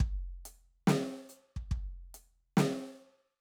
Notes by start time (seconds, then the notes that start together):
0.01 kick, ride
0.46 closed hi-hat
0.88 snare
1.30 closed hi-hat
1.57 kick
1.72 kick
2.15 closed hi-hat
2.58 snare